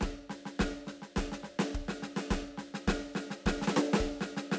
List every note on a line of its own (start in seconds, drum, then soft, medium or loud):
0.01 kick medium
0.01 snare medium
0.30 snare medium
0.46 snare medium
0.59 kick medium
0.59 snare loud
0.87 snare medium
1.02 snare soft
1.16 kick medium
1.16 snare loud
1.32 snare medium
1.43 snare soft
1.59 snare loud
1.75 kick medium
1.88 snare medium
2.03 snare medium
2.16 snare medium
2.31 kick medium
2.31 snare loud
2.58 snare medium
2.74 snare medium
2.88 kick medium
2.88 snare loud
3.15 snare medium
3.30 snare medium
3.46 kick medium
3.46 snare loud
3.46 open hi-hat soft
3.62 snare medium
3.68 snare loud
3.76 snare loud
3.93 snare loud
4.00 kick medium
4.21 snare medium
4.37 snare medium
4.52 snare loud